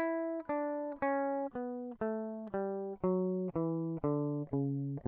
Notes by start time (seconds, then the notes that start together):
0.00 E4
0.50 D4
1.03 C#4
1.56 B3
2.03 A3
2.55 G3
3.05 F#3
3.57 E3
4.06 D3
4.55 C#3